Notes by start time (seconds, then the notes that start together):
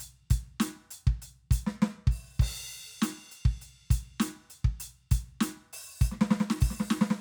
0.01 closed hi-hat
0.31 closed hi-hat, kick
0.61 closed hi-hat, snare
0.92 closed hi-hat
1.08 kick
1.23 closed hi-hat
1.52 closed hi-hat, kick
1.68 snare
1.83 snare
2.08 open hi-hat, kick
2.16 open hi-hat
2.41 kick, crash
2.72 closed hi-hat
3.03 closed hi-hat, snare
3.32 closed hi-hat
3.46 kick
3.62 closed hi-hat
3.92 closed hi-hat, kick
4.21 closed hi-hat, snare
4.51 closed hi-hat
4.66 kick
4.81 closed hi-hat
5.12 closed hi-hat, kick
5.42 closed hi-hat, snare
5.74 open hi-hat
6.02 open hi-hat, kick
6.06 hi-hat pedal
6.13 snare
6.22 snare
6.32 snare
6.41 snare, hi-hat pedal
6.51 snare
6.62 open hi-hat, kick
6.71 snare
6.81 snare
6.91 snare
7.02 snare
7.11 snare